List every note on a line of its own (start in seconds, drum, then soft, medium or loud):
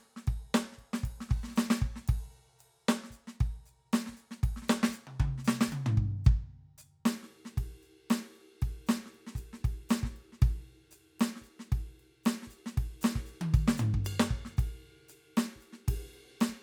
0.01 crash soft
0.17 snare soft
0.27 kick medium
0.27 crash soft
0.54 snare loud
0.54 crash soft
0.72 snare soft
0.78 kick soft
0.78 crash soft
0.93 snare medium
1.03 kick medium
1.03 hi-hat pedal soft
1.03 crash medium
1.21 snare medium
1.29 kick medium
1.29 snare soft
1.29 crash soft
1.43 snare soft
1.48 snare soft
1.51 snare soft
1.56 snare loud
1.56 hi-hat pedal medium
1.70 snare loud
1.82 kick medium
1.82 snare soft
1.96 snare soft
2.08 kick medium
2.08 crash medium
2.32 crash soft
2.59 hi-hat pedal soft
2.59 crash soft
2.89 snare loud
2.89 crash soft
3.04 snare soft
3.08 kick soft
3.08 snare soft
3.12 hi-hat pedal soft
3.27 snare soft
3.41 kick medium
3.41 crash soft
3.66 hi-hat pedal soft
3.66 crash soft
3.93 snare loud
3.93 crash medium
4.06 kick soft
4.06 snare soft
4.12 snare soft
4.17 hi-hat pedal soft
4.17 crash soft
4.31 snare soft
4.43 kick medium
4.43 crash medium
4.56 snare soft
4.62 snare soft
4.66 snare soft
4.66 hi-hat pedal medium
4.70 snare loud
4.83 snare loud
4.89 kick soft
4.89 hi-hat pedal medium
4.97 ride soft
5.07 mid tom medium
5.20 kick medium
5.20 mid tom loud
5.38 snare soft
5.45 snare loud
5.45 hi-hat pedal medium
5.61 snare loud
5.68 kick soft
5.68 hi-hat pedal soft
5.72 mid tom loud
5.86 floor tom loud
5.97 kick medium
6.25 kick loud
6.25 hi-hat pedal soft
6.78 hi-hat pedal medium
7.06 snare loud
7.06 ride medium
7.23 snare soft
7.45 snare soft
7.58 kick medium
7.58 ride medium
7.82 hi-hat pedal soft
7.82 ride soft
8.10 snare loud
8.10 ride medium
8.36 ride soft
8.48 snare soft
8.62 kick medium
8.62 ride medium
8.87 snare loud
8.87 hi-hat pedal soft
8.87 ride medium
9.06 snare soft
9.15 ride soft
9.27 snare soft
9.30 snare soft
9.35 kick soft
9.35 hi-hat pedal soft
9.35 ride soft
9.53 snare soft
9.64 kick medium
9.64 ride medium
9.89 snare loud
9.89 hi-hat pedal medium
9.89 ride medium
10.03 kick medium
10.03 snare soft
10.17 ride soft
10.33 snare soft
10.42 kick loud
10.42 ride medium
10.67 ride soft
10.91 hi-hat pedal soft
10.91 ride soft
11.20 snare loud
11.20 ride medium
11.36 snare soft
11.42 kick soft
11.42 hi-hat pedal soft
11.47 ride soft
11.60 snare soft
11.72 kick medium
11.72 ride medium
12.00 ride soft
12.24 snare loud
12.24 hi-hat pedal soft
12.24 ride medium
12.43 snare soft
12.47 kick soft
12.47 hi-hat pedal soft
12.52 ride soft
12.66 snare medium
12.77 kick medium
12.77 ride medium
13.01 snare loud
13.01 hi-hat pedal medium
13.01 ride medium
13.15 kick medium
13.15 snare soft
13.26 hi-hat pedal soft
13.26 ride bell soft
13.41 high tom loud
13.54 kick loud
13.54 ride bell medium
13.68 snare loud
13.77 floor tom loud
13.77 hi-hat pedal medium
13.94 kick medium
14.05 hi-hat pedal medium
14.05 ride bell loud
14.20 snare loud
14.31 kick medium
14.45 snare soft
14.57 kick medium
14.57 hi-hat pedal soft
14.57 ride medium
15.09 hi-hat pedal soft
15.09 ride soft
15.37 snare loud
15.37 ride medium
15.54 kick soft
15.54 snare soft
15.60 hi-hat pedal soft
15.60 ride soft
15.73 snare soft
15.88 kick medium
15.88 ride loud
16.14 ride soft
16.41 snare loud
16.41 ride bell medium
16.49 kick soft